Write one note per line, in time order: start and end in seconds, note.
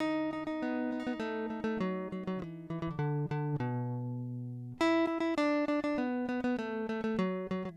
0.01 0.56 D3
0.01 0.32 D#4
0.32 0.48 D#4
0.48 1.01 D#4
0.64 0.93 B3
0.94 1.05 B3
1.01 2.97 D#4
1.08 1.18 B3
1.21 1.50 A3
1.52 1.63 A3
1.65 1.83 A3
1.82 2.11 F#3
2.14 2.26 F#3
2.29 2.40 F#3
2.41 2.69 E3
2.71 2.83 E3
2.83 2.95 E3
3.00 3.08 D3
3.08 3.28 D3
3.32 3.60 D3
3.32 3.53 D3
3.61 4.80 B2
4.82 5.06 E4
5.07 5.22 E4
5.22 5.37 E4
5.39 5.67 D4
5.70 5.83 D4
5.85 6.14 D4
5.98 6.29 B3
6.30 6.43 B3
6.36 6.89 B3
6.46 6.59 B3
6.61 6.89 A3
6.91 7.04 A3
7.06 7.30 A3
7.20 7.50 F#3
7.52 7.72 F#3